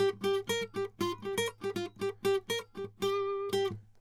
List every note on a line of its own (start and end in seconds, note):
0.00 0.15 G4
0.25 0.44 G4
0.51 0.69 A#4
0.77 0.88 G4
1.02 1.18 F4
1.27 1.42 G4
1.39 1.55 A#4
1.65 1.73 G4
1.77 1.92 F4
2.03 2.13 G4
2.26 2.44 G4
2.51 2.66 A#4
2.79 2.90 G4
3.03 3.15 G4
3.54 3.77 G4